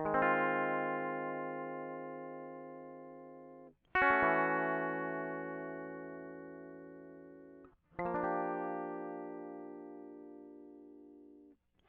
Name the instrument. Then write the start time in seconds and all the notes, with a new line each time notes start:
electric guitar
0.00 D#3
0.06 G#3
0.15 C4
0.23 F4
3.96 F#4
4.02 C#4
4.11 A3
4.24 E3
8.00 F3
8.06 A#3
8.15 D4
8.24 G4